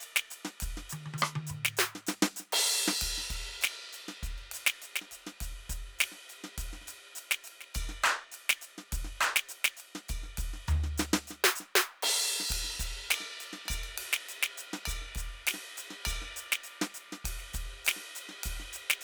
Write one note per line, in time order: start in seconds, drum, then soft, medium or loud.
0.00 hi-hat pedal medium
0.00 ride medium
0.16 snare loud
0.30 hi-hat pedal medium
0.30 ride medium
0.45 snare medium
0.60 kick soft
0.60 hi-hat pedal medium
0.60 ride medium
0.71 kick soft
0.77 snare soft
0.90 hi-hat pedal medium
0.90 high tom medium
1.06 high tom medium
1.14 high tom medium
1.18 hi-hat pedal medium
1.22 cross-stick loud
1.36 high tom loud
1.47 hi-hat pedal medium
1.47 mid tom medium
1.65 snare loud
1.77 snare loud
1.77 hi-hat pedal medium
1.95 snare soft
2.07 snare medium
2.07 hi-hat pedal loud
2.22 snare loud
2.36 snare soft
2.36 hi-hat pedal loud
2.52 crash loud
2.65 hi-hat pedal medium
2.88 snare medium
2.98 kick soft
2.98 hi-hat pedal medium
2.98 ride loud
3.18 snare soft
3.24 snare soft
3.30 kick soft
3.30 hi-hat pedal medium
3.30 ride medium
3.61 snare loud
3.61 hi-hat pedal medium
3.61 ride bell medium
3.93 hi-hat pedal medium
3.93 ride medium
4.08 snare soft
4.23 kick soft
4.23 snare soft
4.23 hi-hat pedal medium
4.23 ride bell soft
4.28 kick soft
4.28 snare soft
4.30 snare soft
4.37 snare soft
4.37 ride bell soft
4.52 hi-hat pedal medium
4.52 ride medium
4.67 snare loud
4.82 hi-hat pedal medium
4.82 ride soft
4.96 snare medium
5.01 snare soft
5.11 kick soft
5.11 hi-hat pedal medium
5.11 ride soft
5.27 snare soft
5.41 kick soft
5.41 hi-hat pedal medium
5.41 ride medium
5.51 snare soft
5.70 kick soft
5.70 hi-hat pedal medium
5.70 ride medium
5.99 snare loud
5.99 hi-hat pedal medium
5.99 ride loud
6.12 snare soft
6.29 hi-hat pedal soft
6.29 ride soft
6.44 snare soft
6.58 kick soft
6.58 hi-hat pedal medium
6.58 ride medium
6.73 snare soft
6.81 snare soft
6.86 snare soft
6.86 hi-hat pedal medium
6.86 ride medium
6.89 snare soft
7.15 hi-hat pedal medium
7.15 ride medium
7.31 snare loud
7.44 hi-hat pedal medium
7.44 ride medium
7.61 snare soft
7.75 kick soft
7.75 hi-hat pedal medium
7.75 ride bell loud
7.82 kick soft
7.85 kick soft
7.85 snare soft
8.03 percussion loud
8.03 hi-hat pedal soft
8.32 hi-hat pedal medium
8.32 ride medium
8.50 snare loud
8.61 hi-hat pedal medium
8.61 ride soft
8.78 snare soft
8.92 kick medium
8.92 hi-hat pedal medium
8.92 ride medium
8.99 kick soft
9.02 kick soft
9.02 snare soft
9.21 percussion loud
9.21 hi-hat pedal medium
9.36 snare loud
9.49 hi-hat pedal medium
9.49 ride medium
9.64 snare loud
9.77 hi-hat pedal medium
9.77 ride medium
9.95 snare medium
10.09 kick soft
10.09 hi-hat pedal medium
10.09 ride bell medium
10.16 kick soft
10.19 kick soft
10.23 snare soft
10.37 kick soft
10.37 hi-hat pedal medium
10.37 ride medium
10.48 kick soft
10.54 snare soft
10.68 floor tom loud
10.68 hi-hat pedal medium
10.84 snare soft
10.98 snare medium
10.98 hi-hat pedal medium
11.13 snare loud
11.27 snare soft
11.27 hi-hat pedal medium
11.44 snare loud
11.56 hi-hat pedal loud
11.60 snare soft
11.75 snare loud
12.03 snare soft
12.03 crash loud
12.40 snare soft
12.49 kick soft
12.49 hi-hat pedal medium
12.49 ride loud
12.59 kick soft
12.64 snare soft
12.69 snare soft
12.72 snare soft
12.75 snare soft
12.78 kick soft
12.78 snare soft
12.78 hi-hat pedal loud
12.78 ride medium
12.88 kick soft
13.11 snare loud
13.11 hi-hat pedal medium
13.11 ride bell loud
13.20 snare soft
13.40 hi-hat pedal medium
13.40 ride medium
13.53 snare soft
13.65 snare soft
13.65 ride bell loud
13.70 kick soft
13.70 hi-hat pedal loud
13.74 snare soft
13.78 kick soft
13.84 ride bell medium
13.98 hi-hat pedal soft
13.98 ride loud
14.13 snare loud
14.29 hi-hat pedal medium
14.29 ride medium
14.43 snare loud
14.58 hi-hat pedal medium
14.58 ride soft
14.73 snare medium
14.86 kick soft
14.86 hi-hat pedal medium
14.86 ride bell loud
14.96 kick soft
15.02 snare soft
15.15 kick soft
15.15 hi-hat pedal medium
15.15 ride medium
15.24 kick soft
15.47 snare loud
15.47 hi-hat pedal medium
15.47 ride loud
15.54 snare soft
15.77 hi-hat pedal medium
15.77 ride medium
15.91 snare soft
16.05 kick soft
16.05 hi-hat pedal medium
16.05 ride bell loud
16.13 kick soft
16.16 kick soft
16.22 snare soft
16.36 hi-hat pedal medium
16.36 ride soft
16.52 snare loud
16.64 hi-hat pedal medium
16.68 ride soft
16.81 snare medium
16.94 hi-hat pedal medium
16.94 ride soft
17.12 snare soft
17.25 kick soft
17.25 hi-hat pedal medium
17.25 ride loud
17.39 snare soft
17.54 kick soft
17.54 hi-hat pedal medium
17.54 ride medium
17.63 kick soft
17.85 snare loud
17.85 hi-hat pedal medium
17.85 ride loud
17.96 snare soft
18.15 hi-hat pedal medium
18.15 ride medium
18.29 snare soft
18.44 kick soft
18.44 hi-hat pedal medium
18.44 ride loud
18.60 snare soft
18.73 hi-hat pedal medium
18.73 ride soft
18.90 snare loud
19.01 hi-hat pedal medium